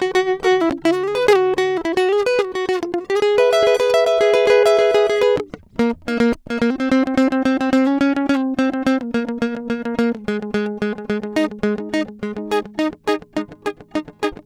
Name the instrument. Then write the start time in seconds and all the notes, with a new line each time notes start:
acoustic guitar
0.00 F#4
0.16 F#4
0.45 F#4
0.62 E4
0.86 E4
0.96 F#4
1.09 G#4
1.16 B4
1.29 F#4
1.59 F#4
1.86 E4
1.98 F#4
2.10 G#4
2.27 B4
2.40 F#4
2.56 F#4
2.70 F#4
2.84 F4
2.95 F4
3.11 G#4
3.24 G#4
3.39 B4 E5
3.52 B4 E5
3.63 G#4
3.68 B4
3.81 G#4 B4
3.95 E5
4.08 B4 E5
4.22 G#4
4.34 G#4 B4
4.44 C5
4.49 G#4 B4 E5
4.67 B4 E5
4.78 G#4
4.96 G#4
5.11 G#4
5.22 G#4 B4
5.80 A#3
6.09 A#3
6.22 A#3
6.51 A#3
6.63 A#3
6.81 C4
6.93 C4
7.08 C4
7.19 C4
7.33 C4
7.46 C4
7.62 C4
7.74 C4
7.88 C#4
8.02 C#4
8.18 C#4
8.30 C#4
8.41 C4
8.59 C4
8.75 C4
8.88 C4
9.02 A#3
9.15 A#3
9.29 A#3
9.43 A#3
9.56 A#3
9.71 A#3
9.87 A#3
10.00 A#3
10.16 G#3
10.29 G#3
10.43 G#3
10.55 G#3
10.67 G#3
10.83 G#3
10.99 G#3
11.10 G#3
11.24 G#3
11.37 G#3 D#4
11.53 G#3
11.64 G#3
11.79 G#3 D#4
11.94 G#3 D#4
12.10 G#3
12.24 G#3
12.38 G#3 D#4
12.52 D#4 G#4
12.67 G#3
12.80 D#4
13.08 D#4 G#4
13.37 D#4
13.67 D#4 G#4
13.96 D#4
14.24 D#4 G#4